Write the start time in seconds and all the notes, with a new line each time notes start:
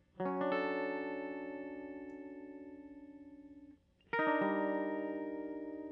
0.20 F#3
0.26 C#4
0.41 D4
0.52 A4
4.13 A#4
4.19 D#4 F4
4.27 D4
4.42 G3